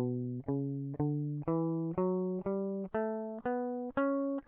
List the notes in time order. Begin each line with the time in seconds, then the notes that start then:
0.00 B2
0.50 C#3
1.01 D3
1.49 E3
1.99 F#3
2.47 G3
2.95 A3
3.46 B3
3.98 C#4